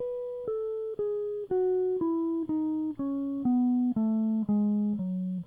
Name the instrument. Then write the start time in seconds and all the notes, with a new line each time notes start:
electric guitar
0.00 B4
0.48 A4
0.99 G#4
1.51 F#4
2.01 E4
2.49 D#4
3.00 C#4
3.46 B3
3.97 A3
4.49 G#3
4.99 F#3